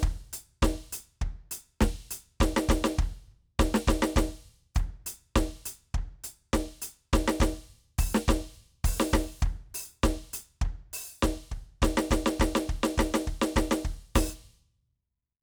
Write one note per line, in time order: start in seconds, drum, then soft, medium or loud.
0.01 kick loud
0.01 hi-hat pedal medium
0.33 closed hi-hat loud
0.63 kick loud
0.63 snare loud
0.93 closed hi-hat loud
1.22 kick loud
1.52 closed hi-hat loud
1.81 kick loud
1.81 snare loud
2.11 closed hi-hat loud
2.41 kick loud
2.41 snare loud
2.57 snare loud
2.69 kick loud
2.69 snare loud
2.85 snare loud
2.99 kick loud
3.28 kick soft
3.32 kick soft
3.60 kick loud
3.60 snare loud
3.75 snare loud
3.88 kick loud
3.88 snare loud
4.03 snare loud
4.17 kick loud
4.17 snare loud
4.75 kick loud
4.75 hi-hat pedal medium
5.07 closed hi-hat loud
5.36 kick loud
5.36 snare loud
5.66 closed hi-hat loud
5.95 kick loud
6.24 closed hi-hat loud
6.54 kick medium
6.54 snare loud
6.82 closed hi-hat loud
7.13 kick loud
7.13 snare loud
7.28 snare loud
7.41 kick loud
7.41 snare loud
7.99 open hi-hat loud
7.99 kick loud
8.15 snare loud
8.28 kick loud
8.28 snare loud
8.54 hi-hat pedal soft
8.84 open hi-hat loud
8.84 kick loud
8.84 hi-hat pedal soft
9.00 snare loud
9.14 kick loud
9.14 snare loud
9.40 kick loud
9.40 hi-hat pedal medium
9.75 open hi-hat loud
10.03 kick loud
10.03 snare loud
10.03 hi-hat pedal soft
10.34 closed hi-hat loud
10.62 kick loud
10.94 open hi-hat loud
11.23 kick loud
11.23 snare loud
11.52 kick medium
11.82 kick loud
11.82 snare loud
11.82 hi-hat pedal soft
11.98 snare loud
12.11 kick loud
12.11 snare loud
12.11 hi-hat pedal medium
12.27 snare loud
12.40 kick loud
12.40 snare loud
12.56 snare loud
12.70 kick medium
12.84 snare loud
12.98 kick loud
12.98 snare loud
13.15 snare loud
13.28 kick medium
13.42 snare loud
13.56 kick loud
13.56 snare loud
13.72 snare loud
13.85 kick medium
13.85 snare soft
14.16 open hi-hat loud
14.16 kick loud
14.16 snare loud
14.30 hi-hat pedal medium